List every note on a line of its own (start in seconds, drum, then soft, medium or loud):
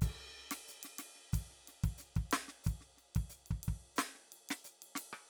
0.01 kick medium
0.01 hi-hat pedal medium
0.01 ride medium
0.51 snare medium
0.51 ride medium
0.68 hi-hat pedal medium
0.83 snare soft
0.83 ride medium
0.99 snare soft
0.99 ride medium
1.16 snare soft
1.19 snare soft
1.33 kick medium
1.33 hi-hat pedal medium
1.33 ride medium
1.51 snare soft
1.68 snare soft
1.68 ride soft
1.84 kick medium
1.84 ride soft
1.98 snare soft
1.98 hi-hat pedal medium
2.16 kick medium
2.16 ride soft
2.31 snare loud
2.31 ride medium
2.48 snare soft
2.64 kick medium
2.64 hi-hat pedal medium
2.64 ride soft
2.81 snare soft
2.97 snare soft
2.97 ride soft
3.15 kick medium
3.15 ride soft
3.30 hi-hat pedal medium
3.46 ride soft
3.51 kick medium
3.63 ride medium
3.68 kick medium
3.96 snare medium
3.96 hi-hat pedal medium
3.96 ride medium
4.15 snare soft
4.32 ride soft
4.49 snare medium
4.49 ride soft
4.64 hi-hat pedal medium
4.82 ride soft
4.95 snare medium
4.95 ride medium
5.13 cross-stick medium